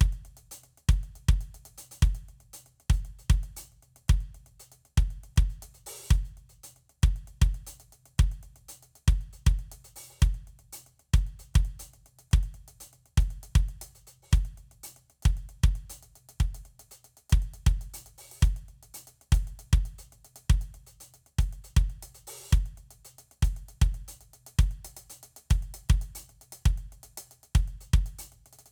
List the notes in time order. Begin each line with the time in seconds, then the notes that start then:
0.01 kick, closed hi-hat
0.13 closed hi-hat
0.25 closed hi-hat
0.37 closed hi-hat
0.51 closed hi-hat
0.64 closed hi-hat
0.78 closed hi-hat
0.89 kick, closed hi-hat
1.03 closed hi-hat
1.15 closed hi-hat
1.29 kick, closed hi-hat
1.41 closed hi-hat
1.54 closed hi-hat
1.65 closed hi-hat
1.78 closed hi-hat
1.91 closed hi-hat
2.02 kick, closed hi-hat
2.15 closed hi-hat
2.29 closed hi-hat
2.40 closed hi-hat
2.53 closed hi-hat
2.66 closed hi-hat
2.80 closed hi-hat
2.90 closed hi-hat, kick
3.05 closed hi-hat
3.19 closed hi-hat
3.30 kick, closed hi-hat
3.43 closed hi-hat
3.57 closed hi-hat
3.72 closed hi-hat
3.83 closed hi-hat
3.96 closed hi-hat
4.08 kick, closed hi-hat
4.21 closed hi-hat
4.35 closed hi-hat
4.46 closed hi-hat
4.60 closed hi-hat
4.72 closed hi-hat
4.85 closed hi-hat
4.98 kick, closed hi-hat
5.10 closed hi-hat
5.24 closed hi-hat
5.36 kick, closed hi-hat
5.50 closed hi-hat
5.62 closed hi-hat
5.74 closed hi-hat
5.86 open hi-hat
6.02 open hi-hat
6.09 kick, hi-hat pedal
6.13 closed hi-hat
6.25 closed hi-hat
6.37 closed hi-hat
6.49 closed hi-hat
6.63 closed hi-hat
6.76 closed hi-hat
6.90 closed hi-hat
7.03 kick, closed hi-hat
7.16 closed hi-hat
7.27 closed hi-hat
7.42 kick, closed hi-hat
7.54 closed hi-hat
7.67 closed hi-hat
7.80 closed hi-hat
7.92 closed hi-hat
8.06 closed hi-hat
8.18 kick, closed hi-hat
8.32 closed hi-hat
8.43 closed hi-hat
8.56 closed hi-hat
8.69 closed hi-hat
8.83 closed hi-hat
8.96 closed hi-hat
9.08 kick, closed hi-hat
9.21 closed hi-hat
9.33 closed hi-hat
9.46 kick, closed hi-hat
9.59 closed hi-hat
9.72 closed hi-hat
9.84 closed hi-hat
9.96 open hi-hat
10.10 open hi-hat
10.19 kick, hi-hat pedal
10.24 closed hi-hat
10.34 closed hi-hat
10.47 closed hi-hat
10.59 closed hi-hat
10.73 closed hi-hat
10.86 closed hi-hat
10.99 closed hi-hat
11.13 closed hi-hat, kick
11.27 closed hi-hat
11.39 closed hi-hat
11.54 kick, closed hi-hat
11.65 closed hi-hat
11.79 closed hi-hat
11.94 closed hi-hat
12.06 closed hi-hat
12.19 closed hi-hat
12.31 kick, closed hi-hat
12.43 closed hi-hat
12.54 closed hi-hat
12.68 closed hi-hat
12.80 closed hi-hat
12.93 closed hi-hat
13.06 closed hi-hat
13.18 kick, closed hi-hat
13.31 closed hi-hat
13.43 closed hi-hat
13.55 kick, closed hi-hat
13.69 closed hi-hat
13.81 closed hi-hat
13.95 closed hi-hat
14.07 open hi-hat
14.22 open hi-hat
14.31 kick, closed hi-hat, hi-hat pedal
14.45 closed hi-hat
14.57 closed hi-hat
14.71 closed hi-hat
14.83 closed hi-hat
14.96 closed hi-hat
15.10 closed hi-hat
15.23 kick, closed hi-hat
15.37 closed hi-hat
15.49 closed hi-hat
15.63 kick, closed hi-hat
15.75 closed hi-hat
15.90 closed hi-hat
16.03 closed hi-hat
16.16 closed hi-hat
16.29 closed hi-hat
16.40 kick, closed hi-hat
16.55 closed hi-hat
16.65 closed hi-hat
16.79 closed hi-hat
16.91 closed hi-hat
17.04 closed hi-hat
17.17 closed hi-hat
17.30 kick, closed hi-hat
17.42 closed hi-hat
17.54 closed hi-hat
17.67 kick, closed hi-hat
17.81 closed hi-hat
17.94 closed hi-hat
18.06 closed hi-hat
18.18 open hi-hat
18.32 open hi-hat
18.41 kick, closed hi-hat, hi-hat pedal
18.56 closed hi-hat
18.68 closed hi-hat
18.83 closed hi-hat
18.94 closed hi-hat
19.07 closed hi-hat
19.21 closed hi-hat
19.32 kick, closed hi-hat
19.47 closed hi-hat
19.59 closed hi-hat
19.73 kick, closed hi-hat
19.85 closed hi-hat
19.99 closed hi-hat
20.12 closed hi-hat
20.25 closed hi-hat
20.36 closed hi-hat
20.50 kick, closed hi-hat
20.61 closed hi-hat
20.74 closed hi-hat
20.87 closed hi-hat
21.00 closed hi-hat
21.14 closed hi-hat
21.26 closed hi-hat
21.39 kick, closed hi-hat
21.53 closed hi-hat
21.64 closed hi-hat
21.77 kick, closed hi-hat
21.90 closed hi-hat
22.03 closed hi-hat
22.15 closed hi-hat
22.27 open hi-hat
22.42 open hi-hat
22.50 kick, closed hi-hat, hi-hat pedal
22.66 closed hi-hat
22.77 closed hi-hat
22.91 closed hi-hat
23.05 closed hi-hat
23.18 closed hi-hat
23.31 closed hi-hat
23.43 kick, closed hi-hat
23.57 closed hi-hat
23.69 closed hi-hat
23.82 kick, closed hi-hat
23.94 closed hi-hat
24.08 closed hi-hat
24.21 closed hi-hat
24.34 closed hi-hat
24.47 closed hi-hat
24.59 kick, closed hi-hat
24.71 closed hi-hat
24.85 closed hi-hat
24.97 closed hi-hat
25.10 closed hi-hat
25.23 closed hi-hat
25.36 closed hi-hat
25.50 kick, closed hi-hat
25.62 closed hi-hat
25.74 closed hi-hat
25.89 kick, closed hi-hat
26.01 closed hi-hat
26.15 closed hi-hat
26.29 closed hi-hat
26.41 closed hi-hat
26.52 closed hi-hat
26.66 kick, closed hi-hat
26.78 closed hi-hat
26.92 closed hi-hat
27.03 closed hi-hat
27.18 closed hi-hat
27.31 closed hi-hat
27.43 closed hi-hat
27.55 kick, closed hi-hat
27.68 closed hi-hat
27.81 closed hi-hat
27.93 kick, closed hi-hat
28.06 closed hi-hat
28.19 closed hi-hat
28.32 closed hi-hat
28.46 closed hi-hat
28.53 closed hi-hat
28.59 closed hi-hat
28.66 closed hi-hat